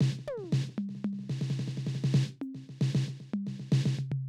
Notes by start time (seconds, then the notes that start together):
0.01 snare
0.12 snare
0.19 snare
0.27 high tom
0.38 snare
0.44 snare
0.52 snare
0.63 snare
0.69 snare
0.78 mid tom
0.89 snare
0.95 snare
1.04 mid tom
1.13 snare
1.19 snare
1.23 snare
1.30 snare
1.41 snare
1.50 snare
1.59 snare
1.68 snare
1.77 snare
1.87 snare
1.95 snare
2.04 snare
2.14 snare
2.42 closed hi-hat, high tom
2.55 snare
2.69 snare
2.81 snare
2.95 snare
3.08 snare
3.20 snare
3.34 mid tom
3.47 snare
3.60 snare
3.72 snare
3.86 snare
3.99 floor tom
4.12 floor tom